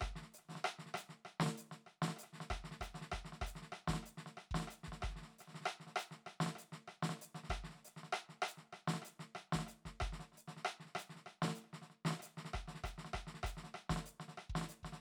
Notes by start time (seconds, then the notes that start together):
0.01 kick, cross-stick
0.16 snare
0.22 snare
0.31 snare, hi-hat pedal
0.39 cross-stick
0.45 snare
0.49 snare
0.55 snare
0.64 cross-stick
0.79 snare
0.86 snare
0.94 cross-stick, hi-hat pedal
1.09 snare
1.25 cross-stick
1.40 snare
1.46 snare
1.55 cross-stick, hi-hat pedal
1.62 snare
1.71 snare
1.87 cross-stick
2.02 snare
2.08 snare
2.17 cross-stick, hi-hat pedal
2.23 cross-stick
2.30 snare
2.33 snare
2.40 snare
2.50 kick, cross-stick
2.64 snare
2.71 snare
2.78 kick, cross-stick, snare
2.83 hi-hat pedal
2.95 snare
3.02 snare
3.12 kick, cross-stick
3.25 snare
3.32 snare
3.42 kick, cross-stick
3.47 hi-hat pedal
3.55 snare
3.62 snare
3.72 cross-stick
3.88 kick, snare
3.94 snare
4.03 cross-stick, hi-hat pedal
4.18 snare
4.26 snare
4.37 cross-stick
4.51 kick, snare
4.57 kick, snare
4.68 cross-stick, hi-hat pedal
4.73 cross-stick
4.84 snare
4.88 kick
4.92 snare
5.01 kick, cross-stick, snare
5.10 snare
5.16 snare
5.22 snare
5.28 snare
5.32 snare
5.39 cross-stick, hi-hat pedal
5.47 snare
5.55 snare
5.61 snare
5.66 cross-stick
5.80 snare
5.87 snare
5.96 cross-stick, hi-hat pedal
6.11 snare
6.26 cross-stick
6.40 snare
6.46 snare
6.55 cross-stick, hi-hat pedal
6.62 cross-stick
6.72 snare
6.88 cross-stick
7.03 snare
7.09 snare
7.17 snare
7.21 snare, hi-hat pedal
7.35 snare
7.44 snare
7.50 kick, cross-stick
7.64 snare
7.70 snare
7.75 snare
7.80 snare
7.85 cross-stick, hi-hat pedal
7.97 snare
8.04 snare
8.13 cross-stick
8.29 snare
8.42 cross-stick
8.48 hi-hat pedal
8.57 snare
8.73 cross-stick
8.88 snare
8.94 snare
9.02 cross-stick, hi-hat pedal
9.08 cross-stick
9.20 snare
9.35 cross-stick
9.53 kick, snare
9.59 snare
9.67 cross-stick, hi-hat pedal
9.85 kick, snare
10.00 kick, cross-stick
10.13 snare
10.20 snare
10.32 snare
10.37 hi-hat pedal
10.48 snare
10.57 snare
10.65 cross-stick
10.80 snare
10.86 snare
10.90 snare
10.95 cross-stick, hi-hat pedal
11.10 snare
11.16 snare
11.26 cross-stick
11.42 snare
11.48 snare
11.55 cross-stick, hi-hat pedal
11.64 cross-stick
11.73 snare
11.82 snare
11.90 snare
12.05 snare
12.11 snare
12.17 cross-stick, snare
12.22 cross-stick, hi-hat pedal
12.37 snare
12.45 snare
12.54 kick, cross-stick
12.68 snare
12.75 snare
12.84 kick, cross-stick, hi-hat pedal
12.98 snare
13.05 snare
13.14 kick, cross-stick
13.27 snare
13.34 snare
13.43 kick, cross-stick, hi-hat pedal
13.57 snare
13.64 snare
13.74 cross-stick
13.90 kick, snare
13.96 snare
14.05 snare, hi-hat pedal
14.20 snare
14.28 snare
14.38 cross-stick
14.50 kick
14.55 snare
14.61 snare
14.69 snare, hi-hat pedal
14.83 kick, snare
14.93 snare